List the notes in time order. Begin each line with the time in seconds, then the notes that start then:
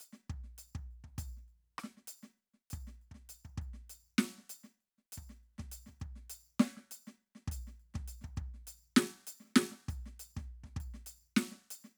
0.02 percussion
0.13 snare
0.30 kick, percussion
0.44 snare
0.58 percussion
0.75 kick
0.91 percussion
1.04 kick, snare
1.18 kick, percussion
1.37 snare
1.48 percussion
1.79 cross-stick
1.84 snare
1.97 snare
2.08 percussion
2.23 snare
2.38 percussion
2.54 snare
2.71 kick, percussion
2.87 snare
3.02 percussion
3.12 kick, snare
3.29 percussion
3.45 kick
3.58 kick, percussion
3.74 snare
3.90 percussion
4.19 snare
4.38 snare
4.50 percussion
4.64 snare
4.81 percussion
4.98 snare
5.12 percussion
5.18 kick
5.30 snare
5.43 percussion
5.58 kick, snare
5.72 percussion
5.86 kick, snare
6.00 kick, percussion
6.16 snare
6.30 percussion
6.60 snare
6.77 snare
6.91 percussion
7.07 snare
7.21 percussion
7.35 snare
7.48 kick, percussion
7.67 snare
7.80 percussion
7.94 kick, snare
8.08 percussion
8.21 kick, snare
8.37 kick, percussion
8.54 snare
8.67 percussion
8.97 snare
9.02 cross-stick
9.27 percussion
9.40 snare
9.44 snare
9.47 snare
9.56 snare
9.72 snare
9.89 kick, percussion
10.06 snare
10.20 percussion
10.37 kick, snare
10.64 kick, snare
10.77 kick, percussion
10.94 snare
11.06 percussion
11.37 snare
11.52 snare
11.55 snare
11.71 percussion
11.84 snare